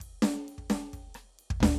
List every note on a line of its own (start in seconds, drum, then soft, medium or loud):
0.00 kick soft
0.00 ride medium
0.22 snare loud
0.22 ride soft
0.48 ride soft
0.58 kick soft
0.70 snare medium
0.70 ride medium
0.93 kick soft
0.93 ride soft
1.15 cross-stick medium
1.15 ride soft
1.24 snare soft
1.39 ride soft
1.50 kick medium
1.60 snare loud
1.60 floor tom loud